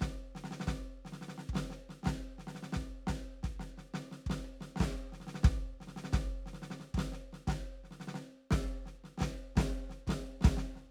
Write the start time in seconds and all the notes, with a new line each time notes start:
0.01 kick, snare
0.35 snare
0.44 snare
0.51 snare
0.60 snare
0.67 kick, snare
1.05 snare
1.12 snare
1.21 snare
1.28 snare
1.38 snare
1.49 kick
1.53 snare
1.55 snare
1.70 snare
1.89 snare
2.03 snare
2.06 kick, snare
2.38 snare
2.47 snare
2.55 snare
2.63 snare
2.73 kick, snare
3.07 kick, snare
3.43 kick, snare
3.60 snare
3.78 snare
3.94 snare
4.11 snare
4.26 kick, snare
4.30 snare
4.45 cross-stick
4.61 snare
4.76 snare
4.80 kick, snare
5.12 snare
5.20 snare
5.27 snare
5.34 snare
5.43 kick, snare
5.80 snare
5.87 snare
5.96 snare
6.04 snare
6.13 kick, snare
6.46 snare
6.53 snare
6.62 snare
6.70 snare
6.80 snare
6.94 kick, snare
6.98 snare
7.12 snare
7.33 snare
7.47 kick, snare
7.84 snare
7.91 snare
8.00 snare
8.08 snare
8.14 snare
8.51 kick, snare
8.86 snare
9.04 snare
9.18 snare
9.21 kick, snare
9.56 kick, snare
9.57 snare
9.90 snare
10.07 kick, snare
10.09 snare
10.41 snare
10.44 kick, snare
10.57 snare
10.76 snare